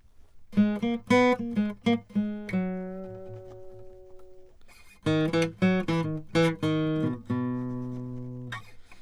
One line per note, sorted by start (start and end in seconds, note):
0.58 0.80 G#3
0.83 1.02 A#3
1.11 1.33 B3
1.33 1.59 A#3
1.57 1.75 G#3
1.87 2.05 A#3
2.16 2.50 G#3
2.54 4.58 F#3
5.07 5.32 D#3
5.34 5.53 E3
5.62 5.84 F#3
5.89 6.01 E3
6.02 6.25 D#3
6.35 6.59 E3
6.63 7.16 D#3
7.04 7.18 B2
7.31 8.59 B2